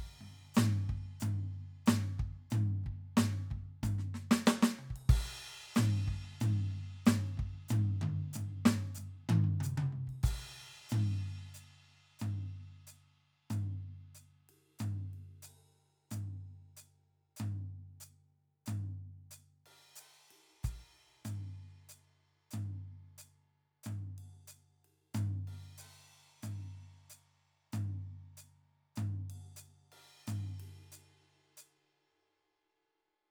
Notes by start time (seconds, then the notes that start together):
0.22 floor tom
0.55 snare, floor tom, hi-hat pedal
0.65 floor tom
0.90 kick, floor tom
1.21 floor tom, hi-hat pedal
1.54 floor tom
1.87 snare, floor tom, hi-hat pedal
2.19 kick, floor tom
2.51 floor tom, hi-hat pedal
2.85 kick, floor tom
3.18 snare, floor tom, hi-hat pedal
3.51 kick, floor tom
3.84 kick, floor tom, hi-hat pedal
3.99 snare
4.15 snare
4.32 snare
4.47 snare, hi-hat pedal
4.63 snare
4.80 mid tom
4.91 kick
4.97 crash
5.10 kick, crash
5.76 snare, floor tom, hi-hat pedal
6.08 kick, floor tom
6.41 floor tom, hi-hat pedal
6.72 floor tom
7.07 snare, floor tom, hi-hat pedal
7.38 kick, floor tom
7.69 floor tom, hi-hat pedal
8.02 floor tom, high tom
8.34 floor tom, hi-hat pedal
8.66 snare, floor tom
8.96 floor tom, hi-hat pedal
9.30 floor tom, high tom
9.45 high tom
9.61 hi-hat pedal, mid tom
9.78 mid tom
9.93 floor tom
10.08 kick, crash
10.24 kick, hi-hat pedal, crash
10.57 floor tom
10.90 floor tom, hi-hat pedal
11.00 floor tom
11.55 hi-hat pedal
12.20 floor tom, hi-hat pedal
12.88 hi-hat pedal
13.51 floor tom, hi-hat pedal
14.15 hi-hat pedal
14.50 ride
14.80 floor tom, hi-hat pedal
15.14 ride
15.43 hi-hat pedal, crash
16.12 floor tom, hi-hat pedal
16.78 hi-hat pedal
17.37 floor tom, hi-hat pedal
18.01 hi-hat pedal
18.67 floor tom, hi-hat pedal
19.32 hi-hat pedal
19.67 crash
19.97 hi-hat pedal, crash
20.32 ride
20.64 kick, hi-hat pedal, crash
21.26 floor tom, hi-hat pedal
21.90 hi-hat pedal
22.52 floor tom, hi-hat pedal
23.19 hi-hat pedal
23.84 floor tom, hi-hat pedal
24.19 crash
24.48 hi-hat pedal
24.85 ride
25.15 floor tom, hi-hat pedal
25.48 crash
25.79 hi-hat pedal, crash
26.43 floor tom, hi-hat pedal
27.11 hi-hat pedal
27.73 floor tom, hi-hat pedal
28.38 hi-hat pedal
28.96 floor tom, hi-hat pedal
29.31 crash
29.57 hi-hat pedal
29.93 crash
30.28 floor tom, hi-hat pedal
30.61 ride
30.74 ride
30.93 hi-hat pedal, crash
31.58 hi-hat pedal